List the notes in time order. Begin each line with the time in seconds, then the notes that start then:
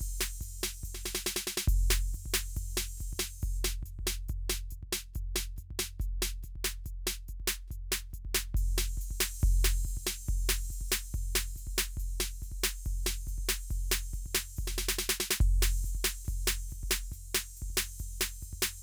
0.01 open hi-hat, kick
0.21 open hi-hat, snare
0.41 open hi-hat, kick, snare
0.63 open hi-hat, snare
0.84 open hi-hat, kick
0.95 snare
1.06 snare
1.15 snare
1.26 snare
1.36 snare
1.47 snare
1.68 open hi-hat, kick
1.91 snare, crash
2.14 open hi-hat, kick
2.26 kick
2.34 open hi-hat, snare
2.49 snare
2.57 open hi-hat, kick
2.77 open hi-hat, snare
2.97 open hi-hat, kick, snare
3.13 kick
3.19 open hi-hat, snare
3.42 open hi-hat, kick, snare
3.64 closed hi-hat, snare
3.83 closed hi-hat, kick, snare
3.99 kick
4.07 closed hi-hat, snare
4.29 closed hi-hat, kick
4.50 closed hi-hat, snare
4.70 closed hi-hat, kick, snare
4.83 kick
4.93 closed hi-hat, snare
5.14 closed hi-hat, kick, snare
5.36 closed hi-hat, snare
5.57 closed hi-hat, kick, snare
5.71 kick
5.79 closed hi-hat, snare
5.99 closed hi-hat, kick, snare
6.22 closed hi-hat, snare
6.43 closed hi-hat, kick, snare
6.56 kick
6.65 closed hi-hat, snare
6.84 closed hi-hat, kick, snare
7.07 closed hi-hat, snare
7.28 closed hi-hat, kick
7.40 kick
7.48 closed hi-hat, snare
7.68 closed hi-hat, kick, snare
7.92 closed hi-hat, snare
8.10 closed hi-hat, kick, snare
8.25 kick
8.35 closed hi-hat, snare
8.55 open hi-hat, kick
8.78 open hi-hat, snare
8.98 open hi-hat, kick, snare
9.11 kick
9.21 open hi-hat, snare
9.40 open hi-hat, kick, snare
9.64 open hi-hat, snare
9.85 open hi-hat, kick
9.97 kick
10.07 open hi-hat, snare
10.26 open hi-hat, kick, snare
10.49 open hi-hat, snare
10.70 open hi-hat, kick, snare
10.81 kick
10.92 open hi-hat, snare
11.14 open hi-hat, kick
11.35 open hi-hat, snare
11.56 open hi-hat, kick, snare
11.67 kick
11.78 open hi-hat, snare
11.97 open hi-hat, kick, snare
12.20 open hi-hat, snare
12.42 open hi-hat, kick, snare
12.52 kick
12.64 open hi-hat, snare
12.86 open hi-hat, kick
13.06 open hi-hat, snare
13.27 open hi-hat, kick, snare
13.38 kick
13.49 open hi-hat, snare
13.70 open hi-hat, kick, snare
13.92 open hi-hat, snare
14.13 open hi-hat, kick, snare
14.26 kick
14.35 open hi-hat, snare
14.57 open hi-hat, kick
14.67 snare
14.78 snare
14.89 snare
14.99 snare
15.09 snare
15.20 snare
15.31 snare
15.41 kick, crash
15.62 open hi-hat, snare
15.85 open hi-hat, kick, snare
15.95 kick
16.04 open hi-hat, snare
16.25 open hi-hat, kick, snare
16.47 open hi-hat, snare
16.69 open hi-hat, kick, snare
16.83 kick
16.91 open hi-hat, snare
17.12 open hi-hat, kick, snare
17.35 open hi-hat, snare
17.57 open hi-hat, snare
17.62 kick
17.70 kick
17.77 open hi-hat, snare
18.00 open hi-hat, kick
18.21 open hi-hat, snare
18.43 open hi-hat, kick
18.53 kick
18.62 open hi-hat, snare